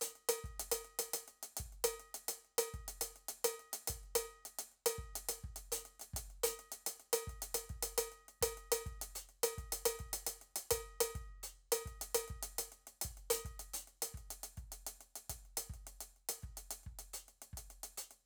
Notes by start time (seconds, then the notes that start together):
0.01 closed hi-hat
0.15 closed hi-hat
0.29 closed hi-hat
0.44 kick, closed hi-hat
0.59 closed hi-hat
0.71 closed hi-hat
0.84 closed hi-hat
0.99 closed hi-hat
1.13 closed hi-hat
1.28 closed hi-hat
1.43 closed hi-hat
1.57 kick, closed hi-hat
1.72 closed hi-hat
1.84 closed hi-hat
1.99 closed hi-hat
2.14 closed hi-hat
2.28 closed hi-hat
2.45 closed hi-hat
2.58 closed hi-hat
2.74 kick, closed hi-hat
2.88 closed hi-hat
3.01 closed hi-hat
3.16 closed hi-hat
3.28 closed hi-hat
3.44 closed hi-hat
3.59 closed hi-hat
3.73 closed hi-hat
3.87 kick, closed hi-hat
4.03 closed hi-hat
4.15 closed hi-hat
4.30 closed hi-hat
4.45 closed hi-hat
4.58 closed hi-hat
4.71 closed hi-hat
4.86 closed hi-hat
4.98 kick
5.03 closed hi-hat
5.15 closed hi-hat
5.28 closed hi-hat
5.43 kick, closed hi-hat
5.56 closed hi-hat
5.72 closed hi-hat
5.85 closed hi-hat
5.99 closed hi-hat
6.01 closed hi-hat
6.13 kick, closed hi-hat
6.30 closed hi-hat
6.43 closed hi-hat
6.59 closed hi-hat
6.72 closed hi-hat
6.86 closed hi-hat
7.00 closed hi-hat
7.13 closed hi-hat
7.27 kick, closed hi-hat
7.42 closed hi-hat
7.54 closed hi-hat
7.69 kick, closed hi-hat
7.82 closed hi-hat
7.98 closed hi-hat
8.12 closed hi-hat
8.28 closed hi-hat
8.41 kick, closed hi-hat
8.57 closed hi-hat
8.72 closed hi-hat
8.86 kick, closed hi-hat
9.01 closed hi-hat
9.15 closed hi-hat
9.29 closed hi-hat
9.43 closed hi-hat
9.58 kick, closed hi-hat
9.72 closed hi-hat
9.85 closed hi-hat
9.99 kick, closed hi-hat
10.13 closed hi-hat
10.26 closed hi-hat
10.41 closed hi-hat
10.56 closed hi-hat
10.70 kick, closed hi-hat
10.88 closed hi-hat
11.00 closed hi-hat
11.15 kick, closed hi-hat
11.43 closed hi-hat
11.72 closed hi-hat
11.85 kick, closed hi-hat
12.01 closed hi-hat
12.14 closed hi-hat
12.28 kick, closed hi-hat
12.42 closed hi-hat
12.58 closed hi-hat
12.72 closed hi-hat
12.87 closed hi-hat
13.01 kick, closed hi-hat
13.17 closed hi-hat
13.30 closed hi-hat
13.45 kick, closed hi-hat
13.59 closed hi-hat
13.73 closed hi-hat
13.87 closed hi-hat
14.02 closed hi-hat
14.14 kick, closed hi-hat
14.30 closed hi-hat
14.43 closed hi-hat
14.57 kick, closed hi-hat
14.72 closed hi-hat
14.86 closed hi-hat
15.00 closed hi-hat
15.15 closed hi-hat
15.29 kick, closed hi-hat
15.45 closed hi-hat
15.57 closed hi-hat
15.69 kick
15.73 closed hi-hat
15.87 closed hi-hat
16.00 closed hi-hat
16.16 closed hi-hat
16.29 closed hi-hat
16.42 kick, closed hi-hat
16.57 closed hi-hat
16.70 closed hi-hat
16.83 kick, closed hi-hat
16.99 closed hi-hat
17.13 closed hi-hat
17.28 closed hi-hat
17.42 closed hi-hat
17.53 kick
17.57 closed hi-hat
17.70 closed hi-hat
17.83 closed hi-hat
17.97 closed hi-hat
18.11 closed hi-hat